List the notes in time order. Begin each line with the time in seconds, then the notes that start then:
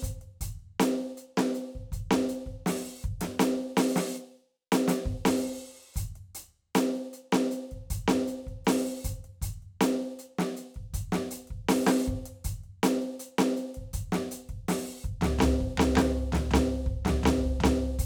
0.01 closed hi-hat, kick, hi-hat pedal
0.21 closed hi-hat
0.41 closed hi-hat, kick
0.59 closed hi-hat
0.80 closed hi-hat, snare
1.17 closed hi-hat
1.37 closed hi-hat, snare
1.54 closed hi-hat
1.72 kick, closed hi-hat
1.92 closed hi-hat, kick
2.11 snare, closed hi-hat
2.29 closed hi-hat
2.46 kick, closed hi-hat
2.66 open hi-hat, snare
3.02 kick, hi-hat pedal
3.21 snare, closed hi-hat
3.39 open hi-hat, snare
3.77 open hi-hat, snare
3.96 open hi-hat, snare
4.15 hi-hat pedal
4.72 closed hi-hat, snare
4.88 closed hi-hat, snare
5.05 kick
5.25 open hi-hat, snare
5.94 closed hi-hat, kick, hi-hat pedal
6.15 closed hi-hat
6.35 closed hi-hat
6.53 closed hi-hat
6.75 closed hi-hat, snare
6.95 closed hi-hat
7.13 closed hi-hat
7.32 snare, closed hi-hat
7.51 closed hi-hat
7.71 kick, closed hi-hat
7.90 closed hi-hat, kick
8.08 snare
8.27 closed hi-hat
8.46 kick, closed hi-hat
8.64 open hi-hat, snare, hi-hat pedal
9.03 closed hi-hat, kick, hi-hat pedal
9.24 closed hi-hat
9.41 closed hi-hat, kick
9.62 closed hi-hat
9.81 closed hi-hat, snare
10.19 closed hi-hat
10.38 snare
10.56 closed hi-hat
10.74 kick, closed hi-hat
10.93 closed hi-hat, kick
11.12 snare, closed hi-hat
11.31 closed hi-hat
11.47 kick, closed hi-hat
11.68 open hi-hat, snare
11.86 open hi-hat, snare
12.06 kick, hi-hat pedal
12.25 closed hi-hat
12.44 closed hi-hat, kick
12.63 closed hi-hat
12.83 closed hi-hat, snare
13.02 closed hi-hat
13.19 closed hi-hat
13.38 snare, closed hi-hat
13.56 closed hi-hat
13.74 kick, closed hi-hat
13.93 closed hi-hat, kick
14.12 snare
14.31 closed hi-hat
14.49 kick, closed hi-hat
14.68 open hi-hat, snare
15.03 kick, hi-hat pedal
15.21 snare, floor tom
15.39 snare, floor tom, hi-hat pedal
15.60 kick
15.77 snare, floor tom
15.95 snare, floor tom
16.01 floor tom
16.32 snare, floor tom
16.51 snare, floor tom
16.86 kick
17.05 snare, floor tom
17.23 snare, floor tom
17.43 kick
17.60 snare, floor tom
17.99 closed hi-hat, kick